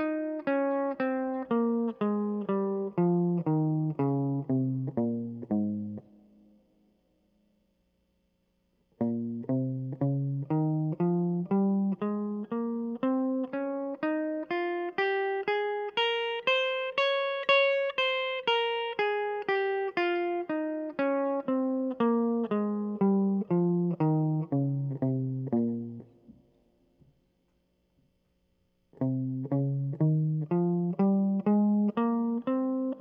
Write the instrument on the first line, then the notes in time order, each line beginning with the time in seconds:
electric guitar
0.00 D#4
0.48 C#4
1.01 C4
1.52 A#3
2.02 G#3
2.50 G3
2.99 F3
3.48 D#3
4.01 C#3
4.51 C3
4.99 A#2
5.53 G#2
9.03 A#2
9.51 C3
10.03 C#3
10.52 D#3
11.01 F3
11.52 G3
12.03 G#3
12.53 A#3
13.04 C4
13.54 C#4
14.04 D#4
14.51 F4
14.99 G4
15.48 G#4
15.98 A#4
16.48 C5
16.98 C#5
17.50 C#5
17.99 C5
18.48 A#4
19.00 G#4
19.49 G4
19.98 F4
20.50 D#4
21.00 C#4
21.49 C4
22.01 A#3
22.52 G#3
23.02 G3
23.52 F3
24.02 D#3
24.54 C#3
25.04 C3
25.55 A#2
29.03 C3
29.53 C#3
30.02 D#3
30.53 F3
31.01 G3
31.48 G#3
31.98 A#3
32.48 C4